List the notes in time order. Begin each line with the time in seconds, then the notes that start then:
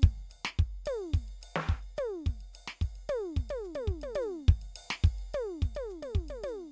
0.01 kick, hi-hat pedal, ride
0.30 hi-hat pedal, ride
0.45 snare
0.57 kick, hi-hat pedal
0.85 kick, hi-hat pedal, high tom, ride bell
1.11 kick, hi-hat pedal, ride
1.29 ride
1.42 hi-hat pedal, ride
1.56 snare
1.68 kick, hi-hat pedal
1.83 ride
1.97 hi-hat pedal, high tom, ride bell
2.27 kick, ride
2.41 ride
2.54 hi-hat pedal, ride bell
2.68 snare
2.81 kick, hi-hat pedal, ride
2.96 ride
3.09 hi-hat pedal, high tom, ride bell
3.36 kick, hi-hat pedal, ride
3.50 high tom, ride bell
3.64 hi-hat pedal
3.75 high tom, ride bell
3.88 kick, hi-hat pedal
4.02 high tom, ride bell
4.16 high tom, ride bell
4.22 hi-hat pedal
4.48 kick, hi-hat pedal, ride
4.62 ride
4.76 hi-hat pedal, ride
4.91 snare
5.04 kick, ride
5.19 ride
5.34 hi-hat pedal, high tom, ride
5.60 kick, hi-hat pedal, ride
5.76 high tom, ride bell
5.90 hi-hat pedal
6.03 high tom, ride bell
6.16 kick, hi-hat pedal
6.29 high tom, ride bell
6.44 high tom, ride bell
6.48 hi-hat pedal